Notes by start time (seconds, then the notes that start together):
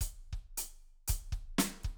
0.06 closed hi-hat, kick
0.33 kick
0.58 closed hi-hat
1.08 closed hi-hat, kick
1.32 kick, closed hi-hat
1.58 closed hi-hat, snare
1.64 snare
1.84 kick, closed hi-hat